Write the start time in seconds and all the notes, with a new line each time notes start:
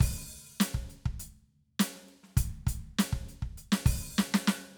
0.01 open hi-hat, kick
0.50 kick
0.60 closed hi-hat, snare, hi-hat pedal
0.75 kick
0.90 closed hi-hat
1.06 kick
1.20 closed hi-hat
1.80 closed hi-hat, snare
1.96 snare
2.09 closed hi-hat
2.24 snare
2.28 snare
2.31 snare
2.37 closed hi-hat, kick
2.67 closed hi-hat, kick
2.99 closed hi-hat, snare
3.13 kick
3.29 closed hi-hat
3.43 kick, crash
3.47 ride
3.58 closed hi-hat
3.73 snare
3.86 open hi-hat, kick
4.19 snare, hi-hat pedal
4.34 snare
4.48 snare